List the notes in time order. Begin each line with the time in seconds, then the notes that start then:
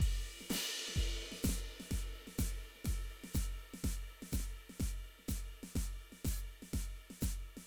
0.01 kick, crash
0.41 snare
0.51 snare, hi-hat pedal, ride
0.56 snare
0.88 snare, ride
0.97 kick, snare, ride
1.32 snare
1.43 kick, snare, hi-hat pedal, ride
1.50 snare
1.80 snare
1.90 kick, snare, hi-hat pedal, ride
2.28 snare
2.39 kick, snare, hi-hat pedal, ride
2.76 snare
2.85 kick, snare, ride
2.91 snare
3.24 snare
3.34 kick, snare, hi-hat pedal, ride
3.74 snare
3.84 kick, snare, ride
4.23 snare
4.32 kick, snare, hi-hat pedal, ride
4.40 snare
4.70 snare
4.80 kick, snare, ride
5.19 snare
5.29 kick, snare, hi-hat pedal, ride
5.64 snare
5.76 kick, snare, hi-hat pedal, ride
6.13 snare
6.25 kick, snare, hi-hat pedal, ride
6.63 snare
6.74 kick, snare, ride
7.11 snare
7.21 kick, snare, hi-hat pedal, ride
7.57 snare